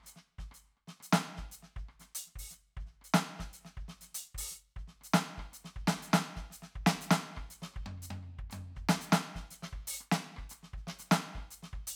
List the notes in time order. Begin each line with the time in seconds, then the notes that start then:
0.01 snare
0.06 hi-hat pedal
0.16 snare
0.27 cross-stick
0.38 kick, snare
0.50 cross-stick, snare, hi-hat pedal
0.77 cross-stick
0.88 snare
0.99 cross-stick, snare, hi-hat pedal
1.13 snare
1.17 cross-stick
1.25 snare
1.36 kick, snare
1.50 snare, hi-hat pedal
1.63 snare
1.76 kick, snare
1.89 cross-stick
1.99 cross-stick, snare, hi-hat pedal
2.15 closed hi-hat
2.27 snare
2.36 open hi-hat, kick
2.51 snare, hi-hat pedal
2.56 closed hi-hat
2.77 kick, snare
2.86 snare
2.90 snare
3.01 cross-stick, hi-hat pedal
3.14 snare
3.20 cross-stick
3.27 snare
3.39 kick, snare
3.52 snare, hi-hat pedal
3.65 snare
3.77 kick, snare
3.88 snare
3.99 snare, hi-hat pedal
4.01 snare
4.14 closed hi-hat
4.34 open hi-hat, kick
4.51 snare, hi-hat pedal
4.55 closed hi-hat
4.76 kick, snare
5.01 cross-stick, snare, hi-hat pedal
5.14 snare
5.19 cross-stick
5.27 snare
5.38 kick, cross-stick
5.52 cross-stick, hi-hat pedal
5.64 snare
5.76 kick, snare
5.87 snare
6.01 cross-stick, hi-hat pedal
6.13 snare
6.19 snare
6.24 snare
6.36 kick, snare
6.50 snare, hi-hat pedal
6.62 snare
6.75 kick, cross-stick
6.86 snare
6.99 snare, hi-hat pedal
7.11 snare
7.15 cross-stick
7.25 snare
7.37 kick, cross-stick
7.49 snare, hi-hat pedal
7.62 snare
7.74 kick, cross-stick
7.86 high tom
7.98 cross-stick
8.02 hi-hat pedal
8.10 high tom
8.23 cross-stick
8.39 kick
8.50 cross-stick, hi-hat pedal, high tom
8.75 kick, snare
8.89 snare
9.01 cross-stick, hi-hat pedal
9.12 snare
9.25 cross-stick
9.35 kick, snare
9.43 snare
9.50 cross-stick, snare, hi-hat pedal
9.62 snare
9.73 kick, cross-stick
9.87 open hi-hat
9.96 hi-hat pedal
10.00 cross-stick
10.12 snare
10.17 cross-stick
10.25 snare
10.36 kick, cross-stick
10.49 cross-stick, snare, hi-hat pedal
10.63 snare
10.73 kick, snare
10.87 snare
10.97 snare, hi-hat pedal
10.99 cross-stick, snare
11.11 cross-stick, snare
11.26 snare
11.35 kick, cross-stick
11.51 cross-stick, hi-hat pedal
11.63 snare
11.73 kick, cross-stick
11.87 open hi-hat